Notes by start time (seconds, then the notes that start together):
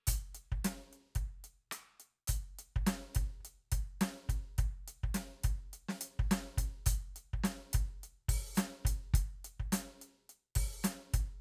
0.05 closed hi-hat, kick
0.35 closed hi-hat
0.52 kick
0.64 snare, closed hi-hat
0.93 closed hi-hat
1.15 kick, closed hi-hat
1.44 closed hi-hat
1.71 cross-stick, closed hi-hat
2.00 closed hi-hat
2.28 closed hi-hat, kick
2.59 closed hi-hat
2.76 kick
2.87 snare, closed hi-hat
3.15 kick, closed hi-hat
3.40 kick
3.45 closed hi-hat
3.72 kick, closed hi-hat
4.01 snare, closed hi-hat
4.29 kick, closed hi-hat
4.58 kick, closed hi-hat
4.88 closed hi-hat
5.03 kick
5.14 snare, closed hi-hat
5.44 kick, closed hi-hat
5.73 closed hi-hat
5.89 snare
6.01 closed hi-hat
6.19 kick
6.31 snare, closed hi-hat
6.58 kick, closed hi-hat
6.86 closed hi-hat, kick
7.16 closed hi-hat
7.33 kick
7.44 snare, closed hi-hat
7.73 kick, closed hi-hat
8.03 closed hi-hat
8.28 kick, open hi-hat
8.55 snare, closed hi-hat, hi-hat pedal
8.85 kick, closed hi-hat
9.14 kick, closed hi-hat
9.44 closed hi-hat
9.60 kick
9.72 closed hi-hat, snare
10.01 closed hi-hat
10.29 closed hi-hat
10.55 kick, open hi-hat
10.83 snare, closed hi-hat, hi-hat pedal
10.90 snare
11.14 kick, closed hi-hat